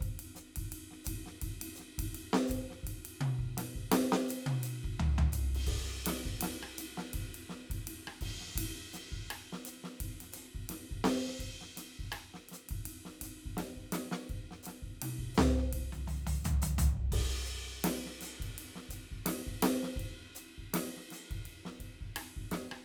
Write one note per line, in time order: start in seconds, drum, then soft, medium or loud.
0.01 kick medium
0.01 ride medium
0.20 ride medium
0.36 snare soft
0.36 hi-hat pedal medium
0.56 kick soft
0.56 ride medium
0.72 ride medium
0.91 snare soft
1.05 kick soft
1.05 hi-hat pedal medium
1.05 ride loud
1.26 snare soft
1.42 kick soft
1.42 ride medium
1.62 ride loud
1.76 snare soft
1.76 hi-hat pedal medium
1.99 kick medium
1.99 ride loud
2.15 ride medium
2.34 snare medium
2.48 kick soft
2.48 hi-hat pedal medium
2.48 ride medium
2.71 snare soft
2.84 kick soft
2.84 ride medium
3.06 ride medium
3.21 high tom loud
3.39 kick soft
3.58 snare medium
3.58 ride loud
3.76 kick soft
3.92 snare loud
3.92 ride loud
4.13 snare medium
4.29 hi-hat pedal medium
4.29 ride medium
4.47 high tom loud
4.64 hi-hat pedal medium
4.64 ride medium
4.85 kick soft
5.00 floor tom loud
5.19 floor tom loud
5.33 hi-hat pedal medium
5.33 ride medium
5.50 kick soft
5.55 ride medium
5.67 kick soft
5.67 crash medium
5.75 kick soft
6.06 snare medium
6.06 ride loud
6.26 kick soft
6.41 snare medium
6.41 ride loud
6.63 cross-stick medium
6.67 cross-stick soft
6.78 hi-hat pedal medium
6.78 ride medium
6.98 snare medium
7.14 kick soft
7.14 ride medium
7.35 ride medium
7.50 snare medium
7.71 kick soft
7.71 ride medium
7.88 ride medium
8.08 cross-stick medium
8.22 kick soft
8.22 ride medium
8.41 snare soft
8.47 snare soft
8.53 kick soft
8.53 snare soft
8.58 ride loud
8.94 snare soft
8.94 hi-hat pedal medium
8.94 ride medium
9.12 kick soft
9.31 cross-stick medium
9.31 ride medium
9.53 snare medium
9.66 kick soft
9.66 hi-hat pedal medium
9.66 ride medium
9.84 snare medium
10.01 kick soft
10.01 ride medium
10.21 snare soft
10.21 ride medium
10.33 snare soft
10.33 hi-hat pedal medium
10.33 ride medium
10.55 kick soft
10.70 snare soft
10.70 ride loud
10.92 kick soft
11.05 snare medium
11.05 ride medium
11.27 snare soft
11.40 kick soft
11.40 ride soft
11.61 snare soft
11.77 snare soft
11.77 hi-hat pedal medium
11.77 ride medium
11.99 kick soft
11.99 ride soft
12.12 cross-stick medium
12.12 ride medium
12.34 snare soft
12.49 snare soft
12.49 ride medium
12.54 hi-hat pedal medium
12.69 kick soft
12.69 ride medium
12.86 ride medium
13.06 snare soft
13.22 kick soft
13.22 hi-hat pedal medium
13.22 ride medium
13.46 kick soft
13.57 snare medium
13.57 ride medium
13.77 kick soft
13.93 snare medium
13.93 hi-hat pedal medium
13.93 ride medium
14.12 snare medium
14.30 kick soft
14.30 ride soft
14.51 snare soft
14.63 snare soft
14.63 hi-hat pedal medium
14.63 ride medium
14.83 kick soft
15.02 high tom medium
15.02 ride loud
15.19 kick soft
15.35 snare loud
15.35 floor tom loud
15.35 hi-hat pedal medium
15.58 snare soft
15.73 kick soft
15.73 ride medium
15.93 open hi-hat medium
15.93 floor tom medium
16.08 open hi-hat medium
16.08 floor tom medium
16.27 open hi-hat medium
16.27 floor tom medium
16.45 open hi-hat loud
16.45 floor tom loud
16.62 open hi-hat loud
16.62 floor tom loud
16.79 open hi-hat loud
16.79 floor tom loud
16.97 kick soft
17.12 kick medium
17.12 crash medium
17.12 ride medium
17.46 hi-hat pedal medium
17.85 snare loud
17.85 ride loud
18.06 snare soft
18.21 snare soft
18.21 hi-hat pedal medium
18.21 ride medium
18.40 kick soft
18.40 ride medium
18.58 ride medium
18.76 snare soft
18.89 kick soft
18.89 hi-hat pedal medium
18.89 ride medium
19.12 kick soft
19.26 snare medium
19.26 ride loud
19.47 kick soft
19.63 snare medium
19.63 ride loud
19.83 snare medium
19.97 kick soft
19.97 ride medium
20.36 hi-hat pedal medium
20.36 ride medium
20.58 kick soft
20.74 snare medium
20.74 ride loud
20.97 snare soft
21.11 snare soft
21.11 hi-hat pedal medium
21.11 ride soft
21.31 kick soft
21.31 ride soft
21.46 ride medium
21.66 snare medium
21.80 kick soft
21.80 ride soft
22.01 kick soft
22.17 cross-stick medium
22.17 ride medium
22.37 kick soft
22.52 snare medium
22.52 ride medium
22.72 cross-stick medium